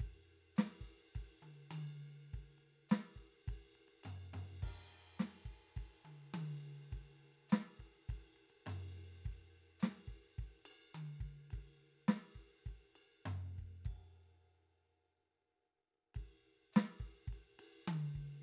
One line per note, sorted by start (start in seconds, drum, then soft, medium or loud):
0.01 kick soft
0.01 ride soft
0.57 snare medium
0.57 hi-hat pedal medium
0.57 ride medium
0.82 kick soft
0.82 ride soft
1.16 kick soft
1.16 ride soft
1.43 high tom soft
1.43 ride soft
1.72 hi-hat pedal medium
1.72 high tom medium
1.72 ride bell medium
2.35 kick soft
2.35 ride soft
2.59 ride soft
2.90 snare medium
2.90 hi-hat pedal medium
2.90 ride medium
3.17 kick soft
3.17 ride soft
3.49 kick soft
3.49 ride medium
3.77 ride soft
3.89 ride soft
4.05 floor tom medium
4.05 hi-hat pedal medium
4.05 ride bell medium
4.35 floor tom medium
4.35 ride medium
4.64 kick soft
4.64 crash soft
5.20 snare medium
5.20 hi-hat pedal medium
5.20 ride medium
5.47 kick soft
5.47 ride soft
5.78 kick soft
5.78 ride soft
6.06 high tom soft
6.06 ride soft
6.35 hi-hat pedal medium
6.35 high tom medium
6.35 ride medium
6.94 kick soft
6.94 ride soft
7.50 snare medium
7.50 hi-hat pedal medium
7.55 ride medium
7.81 kick soft
7.81 ride soft
8.10 kick soft
8.10 ride soft
8.37 ride soft
8.51 ride soft
8.67 floor tom medium
8.67 hi-hat pedal medium
8.67 ride medium
9.27 kick soft
9.27 ride soft
9.81 snare medium
9.81 hi-hat pedal medium
9.85 ride medium
10.09 kick soft
10.14 ride soft
10.40 kick soft
10.40 ride soft
10.67 ride bell medium
10.96 hi-hat pedal medium
10.96 high tom medium
11.22 kick soft
11.52 kick soft
11.52 ride soft
12.09 snare medium
12.09 hi-hat pedal medium
12.09 ride medium
12.37 kick soft
12.67 kick soft
12.67 ride soft
12.97 ride bell soft
13.27 floor tom medium
13.27 hi-hat pedal medium
13.59 kick soft
13.86 kick soft
13.86 crash soft
16.16 kick soft
16.16 ride soft
16.74 snare medium
16.74 hi-hat pedal medium
16.74 ride medium
17.01 kick soft
17.29 kick soft
17.34 ride soft
17.60 ride medium
17.89 hi-hat pedal medium
17.89 high tom loud
18.16 kick soft